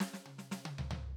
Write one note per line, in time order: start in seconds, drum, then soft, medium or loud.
0.00 snare medium
0.14 snare medium
0.26 high tom medium
0.38 snare soft
0.51 snare medium
0.65 high tom loud
0.78 floor tom medium
0.91 floor tom loud